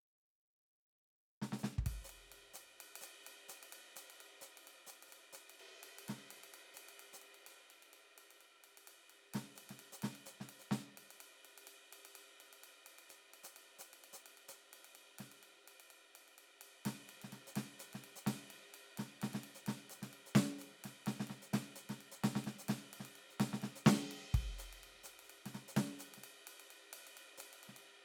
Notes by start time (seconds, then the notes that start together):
1.42 snare
1.52 snare
1.59 hi-hat pedal
1.63 snare
1.78 kick
1.86 kick, ride
2.04 hi-hat pedal
2.09 ride
2.32 ride
2.54 hi-hat pedal, ride
2.80 ride
2.96 ride
3.01 hi-hat pedal, ride
3.23 hi-hat pedal, ride
3.49 hi-hat pedal, ride
3.63 ride
3.70 hi-hat pedal, ride
3.96 hi-hat pedal, ride
4.10 ride
4.20 ride
4.41 hi-hat pedal, ride
4.57 ride
4.62 hi-hat pedal
4.67 ride
4.87 hi-hat pedal, ride
5.03 ride
5.08 hi-hat pedal
5.12 ride
5.33 hi-hat pedal, ride
5.50 ride
5.60 ride
5.83 ride
5.99 ride
6.08 snare, ride
6.31 ride
6.44 ride
6.54 ride
6.74 hi-hat pedal, ride
6.89 ride
7.00 ride
7.13 hi-hat pedal
7.22 ride
7.34 ride
7.46 hi-hat pedal, ride
7.70 ride
7.83 ride
7.93 ride
8.18 ride
8.31 ride
8.41 ride
8.64 ride
8.77 ride
8.87 ride
9.10 ride
9.34 snare, ride
9.55 hi-hat pedal, ride
9.69 snare, ride
9.79 ride
9.92 hi-hat pedal
10.02 snare, ride
10.15 ride
10.26 hi-hat pedal, ride
10.40 snare
10.49 ride
10.59 hi-hat pedal, ride
10.71 snare, ride
10.97 ride
11.11 ride
11.20 ride
11.45 ride
11.58 ride
11.67 ride
11.93 ride
12.05 ride
12.15 ride
12.40 ride
12.53 ride
12.64 ride
12.86 ride
12.99 ride
13.09 hi-hat pedal, ride
13.34 ride
13.44 hi-hat pedal, ride
13.56 ride
13.79 hi-hat pedal, ride
13.93 ride
14.04 ride
14.13 hi-hat pedal
14.26 ride
14.37 ride
14.49 hi-hat pedal, ride
14.73 ride
14.85 ride
14.95 ride
15.19 snare, ride
15.32 ride
15.43 ride
15.68 ride
15.80 ride
15.90 ride
16.15 ride
16.28 ride
16.38 ride
16.61 ride
16.85 snare, ride
17.07 hi-hat pedal, ride
17.22 snare, ride
17.32 snare, ride
17.47 hi-hat pedal
17.56 snare, ride
17.79 hi-hat pedal, ride
17.93 snare, ride
18.04 ride
18.16 hi-hat pedal
18.26 snare, ride
18.50 ride
18.74 ride
18.98 snare, ride
19.22 snare, ride
19.33 snare, ride
19.44 ride
19.55 hi-hat pedal
19.66 snare, ride
19.90 hi-hat pedal, ride
20.02 snare, ride
20.26 hi-hat pedal
20.35 snare, ride
20.58 hi-hat pedal, ride
20.84 snare, ride
21.06 snare, ride
21.20 snare
21.27 snare, ride
21.42 hi-hat pedal
21.53 snare, ride
21.76 hi-hat pedal, ride
21.89 snare, ride
22.01 ride
22.12 hi-hat pedal
22.24 snare, ride
22.35 snare
22.44 snare, ride
22.59 hi-hat pedal
22.68 snare, ride
22.93 ride
23.00 snare
23.05 ride
23.16 ride
23.30 hi-hat pedal
23.40 snare, ride
23.53 snare
23.62 snare, ride
23.76 hi-hat pedal
23.86 snare, ride
24.11 ride
24.34 kick, ride
24.53 snare
24.58 hi-hat pedal, ride
24.73 ride
24.83 ride
24.94 snare
25.04 hi-hat pedal, ride
25.19 ride
25.24 hi-hat pedal
25.30 ride
25.46 snare, ride
25.54 snare, ride
25.68 hi-hat pedal
25.76 snare, ride
25.92 snare
25.99 hi-hat pedal, ride
26.14 snare, ride
26.24 ride
26.47 ride
26.60 ride
26.71 ride
26.93 ride
27.07 ride
27.38 hi-hat pedal, ride
27.53 ride
27.68 snare
27.76 ride